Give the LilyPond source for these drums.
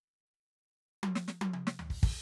\new DrumStaff \drummode { \time 4/4 \tempo 4 = 118 r4 r4 tommh16 sn16 sn16 tommh16 toml16 sn16 tomfh16 <bd cymc>16 | <bd cymc>4 r4 r4 r4 | }